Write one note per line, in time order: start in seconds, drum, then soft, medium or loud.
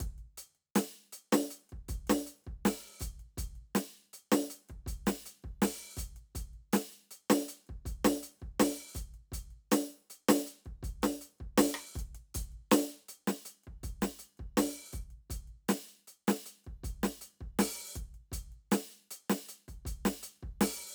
0.00 kick medium
0.00 closed hi-hat medium
0.18 closed hi-hat soft
0.38 closed hi-hat medium
0.55 closed hi-hat soft
0.75 closed hi-hat loud
0.75 snare loud
0.94 closed hi-hat soft
1.12 closed hi-hat medium
1.32 snare loud
1.32 closed hi-hat soft
1.50 closed hi-hat medium
1.69 kick soft
1.69 closed hi-hat soft
1.88 closed hi-hat medium
1.88 kick medium
2.07 snare loud
2.07 closed hi-hat soft
2.26 closed hi-hat medium
2.44 kick soft
2.44 closed hi-hat soft
2.65 open hi-hat medium
2.65 snare loud
3.00 closed hi-hat medium
3.00 kick medium
3.00 hi-hat pedal medium
3.19 closed hi-hat soft
3.38 closed hi-hat medium
3.38 kick medium
3.55 closed hi-hat soft
3.75 closed hi-hat medium
3.75 snare loud
3.94 closed hi-hat soft
4.13 closed hi-hat medium
4.32 snare loud
4.32 closed hi-hat soft
4.50 closed hi-hat medium
4.69 kick soft
4.69 closed hi-hat soft
4.86 closed hi-hat medium
4.86 kick medium
5.06 snare loud
5.06 closed hi-hat soft
5.26 closed hi-hat medium
5.43 kick soft
5.43 closed hi-hat soft
5.62 open hi-hat loud
5.62 snare loud
5.97 closed hi-hat medium
5.97 kick medium
5.97 hi-hat pedal medium
6.16 closed hi-hat soft
6.35 closed hi-hat medium
6.35 kick medium
6.53 closed hi-hat soft
6.73 closed hi-hat medium
6.73 snare loud
6.92 closed hi-hat soft
7.11 closed hi-hat medium
7.30 snare loud
7.30 closed hi-hat soft
7.48 closed hi-hat medium
7.67 kick soft
7.67 closed hi-hat soft
7.85 closed hi-hat medium
7.85 kick medium
8.05 closed hi-hat soft
8.05 snare loud
8.23 closed hi-hat medium
8.40 kick soft
8.40 closed hi-hat soft
8.60 open hi-hat loud
8.60 snare loud
8.94 closed hi-hat medium
8.94 kick medium
8.94 hi-hat pedal medium
9.14 closed hi-hat soft
9.32 closed hi-hat medium
9.32 kick medium
9.50 closed hi-hat soft
9.71 closed hi-hat loud
9.71 snare loud
9.90 closed hi-hat soft
10.10 closed hi-hat medium
10.29 snare loud
10.29 closed hi-hat soft
10.46 closed hi-hat medium
10.65 kick soft
10.65 closed hi-hat soft
10.83 closed hi-hat medium
10.83 kick medium
11.02 snare medium
11.02 closed hi-hat soft
11.21 closed hi-hat medium
11.38 kick soft
11.38 closed hi-hat soft
11.58 open hi-hat loud
11.58 snare loud
11.74 cross-stick medium
11.94 kick medium
11.94 hi-hat pedal soft
11.99 closed hi-hat medium
12.15 closed hi-hat soft
12.34 closed hi-hat loud
12.34 kick medium
12.52 closed hi-hat soft
12.71 closed hi-hat medium
12.71 snare loud
12.89 closed hi-hat soft
13.08 closed hi-hat medium
13.27 snare loud
13.27 closed hi-hat soft
13.45 closed hi-hat medium
13.64 kick soft
13.64 closed hi-hat soft
13.83 closed hi-hat medium
13.83 kick medium
14.02 snare loud
14.02 closed hi-hat soft
14.19 closed hi-hat medium
14.37 kick soft
14.37 closed hi-hat soft
14.57 open hi-hat loud
14.57 snare loud
14.93 kick medium
14.93 hi-hat pedal soft
14.93 open hi-hat medium
15.10 closed hi-hat soft
15.30 closed hi-hat medium
15.30 kick medium
15.47 closed hi-hat soft
15.68 closed hi-hat medium
15.68 snare loud
15.87 closed hi-hat soft
16.07 closed hi-hat medium
16.27 closed hi-hat soft
16.27 snare loud
16.45 closed hi-hat medium
16.45 cross-stick soft
16.64 kick soft
16.64 closed hi-hat soft
16.84 closed hi-hat medium
16.84 kick medium
17.03 closed hi-hat soft
17.03 snare loud
17.21 closed hi-hat medium
17.40 kick soft
17.40 closed hi-hat soft
17.59 open hi-hat loud
17.59 snare loud
17.94 kick medium
17.94 closed hi-hat medium
17.94 hi-hat pedal medium
18.14 closed hi-hat soft
18.32 closed hi-hat medium
18.32 kick medium
18.52 closed hi-hat soft
18.71 closed hi-hat medium
18.71 snare loud
18.91 closed hi-hat soft
19.11 closed hi-hat medium
19.30 closed hi-hat soft
19.30 snare loud
19.49 closed hi-hat medium
19.68 closed hi-hat soft
19.68 kick soft
19.85 closed hi-hat medium
19.85 kick medium
20.05 snare loud
20.05 closed hi-hat soft
20.23 closed hi-hat medium
20.41 kick soft
20.41 closed hi-hat soft
20.61 open hi-hat loud
20.61 snare loud